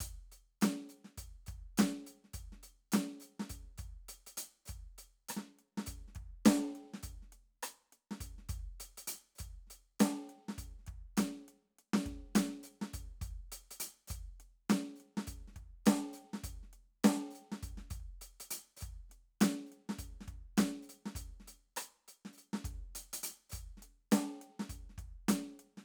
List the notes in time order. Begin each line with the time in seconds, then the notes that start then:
0.00 closed hi-hat, kick
0.32 closed hi-hat
0.61 closed hi-hat, snare
0.89 open hi-hat, hi-hat pedal
1.04 snare
1.17 closed hi-hat, kick
1.46 closed hi-hat, kick
1.77 closed hi-hat, snare
1.90 snare
2.06 closed hi-hat
2.24 snare
2.33 closed hi-hat, kick
2.52 snare
2.63 closed hi-hat
2.92 closed hi-hat, snare
3.20 closed hi-hat, hi-hat pedal
3.39 snare
3.49 closed hi-hat, kick
3.78 closed hi-hat, kick
4.08 closed hi-hat
4.26 closed hi-hat
4.37 closed hi-hat
4.65 closed hi-hat, kick, hi-hat pedal
4.98 closed hi-hat
5.28 closed hi-hat, cross-stick
5.36 snare
5.59 closed hi-hat
5.77 snare
5.86 closed hi-hat, kick
6.08 snare
6.15 kick, closed hi-hat
6.45 closed hi-hat, snare
6.75 closed hi-hat
6.94 snare
7.03 closed hi-hat, kick
7.22 snare
7.32 closed hi-hat
7.62 closed hi-hat, cross-stick
7.92 closed hi-hat
8.11 snare
8.20 closed hi-hat, kick
8.38 snare
8.49 closed hi-hat, kick
8.59 kick
8.80 closed hi-hat
8.97 closed hi-hat
9.07 closed hi-hat
9.35 closed hi-hat, hi-hat pedal
9.40 kick
9.67 closed hi-hat, snare
10.00 closed hi-hat, snare
10.29 closed hi-hat
10.48 snare
10.58 closed hi-hat, kick
10.79 snare
10.83 snare, closed hi-hat
10.87 kick
11.17 closed hi-hat, snare
11.48 closed hi-hat
11.78 closed hi-hat
11.93 snare
12.06 kick, closed hi-hat
12.11 kick
12.35 closed hi-hat, snare
12.48 snare
12.63 closed hi-hat, hi-hat pedal
12.81 snare
12.93 closed hi-hat, kick
13.21 closed hi-hat, kick
13.30 kick
13.52 closed hi-hat
13.71 closed hi-hat
13.80 closed hi-hat
14.07 closed hi-hat, kick, hi-hat pedal
14.40 closed hi-hat
14.69 closed hi-hat, snare
14.95 hi-hat pedal
15.00 closed hi-hat
15.17 snare
15.27 closed hi-hat, kick
15.47 snare
15.53 kick, snare, closed hi-hat
15.86 closed hi-hat, snare
16.13 closed hi-hat, hi-hat pedal
16.33 snare
16.43 closed hi-hat, kick
16.63 snare
16.73 closed hi-hat
17.04 closed hi-hat, snare
17.17 snare
17.30 hi-hat pedal
17.35 closed hi-hat
17.52 snare
17.62 closed hi-hat, kick
17.68 kick
17.77 snare
17.90 closed hi-hat, kick
17.97 kick
18.00 kick
18.21 closed hi-hat
18.40 closed hi-hat
18.50 closed hi-hat
18.76 closed hi-hat, hi-hat pedal
18.82 kick
19.09 snare, closed hi-hat
19.40 closed hi-hat, snare
19.66 hi-hat pedal
19.72 closed hi-hat
19.89 snare
19.98 closed hi-hat, kick
20.20 snare
20.27 kick, closed hi-hat
20.57 closed hi-hat, snare
20.82 hi-hat pedal
20.89 closed hi-hat
21.06 snare
21.15 closed hi-hat, kick
21.20 kick
21.40 snare
21.44 closed hi-hat, snare
21.48 snare
21.76 closed hi-hat, cross-stick
21.81 closed hi-hat
22.08 closed hi-hat
22.25 snare
22.33 hi-hat pedal
22.38 closed hi-hat
22.53 snare
22.64 kick, closed hi-hat
22.70 kick
22.73 kick
22.95 closed hi-hat
23.13 closed hi-hat
23.23 closed hi-hat
23.49 closed hi-hat, kick, hi-hat pedal
23.54 closed hi-hat
23.77 snare
23.82 closed hi-hat
24.11 closed hi-hat, snare
24.41 closed hi-hat
24.59 snare
24.69 closed hi-hat, kick
24.89 snare
24.98 kick, closed hi-hat
25.28 closed hi-hat, snare
25.59 closed hi-hat
25.77 snare